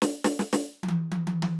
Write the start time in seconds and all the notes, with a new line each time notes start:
0.02 snare
0.24 snare
0.39 snare
0.53 snare
0.83 high tom
0.89 high tom
1.12 high tom
1.27 high tom
1.42 high tom